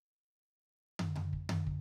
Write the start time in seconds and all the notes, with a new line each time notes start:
0.99 floor tom, high tom
1.16 floor tom, high tom
1.33 kick
1.49 floor tom, high tom
1.67 kick